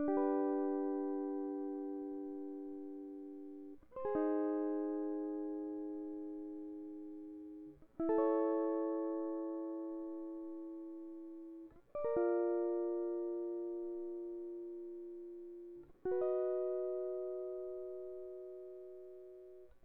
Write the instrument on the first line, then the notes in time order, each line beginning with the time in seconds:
electric guitar
0.00 D4
0.08 G4
0.17 B4
3.96 C5
4.05 G#4
4.16 D#4
8.00 E4
8.09 A4
8.19 C#5
11.95 D5
12.04 A#4
12.17 F4
16.05 F#4
16.12 B4
16.22 D#5